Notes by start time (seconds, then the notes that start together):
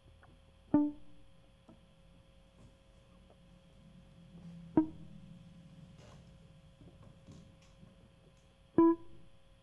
0.75 D4
4.78 D#4
8.79 E4